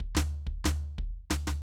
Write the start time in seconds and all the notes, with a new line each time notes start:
0.00 kick
0.15 snare, floor tom
0.47 kick
0.64 snare, floor tom
0.98 kick
1.30 snare, floor tom
1.47 snare, floor tom